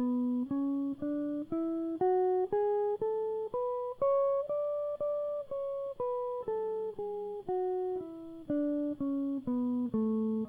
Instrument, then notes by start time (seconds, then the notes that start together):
electric guitar
0.00 B3
0.51 C#4
1.01 D4
1.53 E4
2.02 F#4
2.53 G#4
3.02 A4
3.54 B4
4.02 C#5
4.50 D5
5.01 D5
5.52 C#5
6.00 B4
6.48 A4
7.00 G#4
7.49 F#4
8.01 E4
8.50 D4
9.01 C#4
9.48 B3
9.95 A3